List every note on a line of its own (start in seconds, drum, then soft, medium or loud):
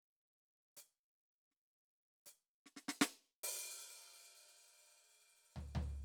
0.77 hi-hat pedal soft
1.51 snare soft
2.26 hi-hat pedal soft
2.66 snare soft
2.76 snare soft
2.88 snare medium
3.01 snare loud
3.43 open hi-hat loud
5.56 floor tom soft
5.75 floor tom medium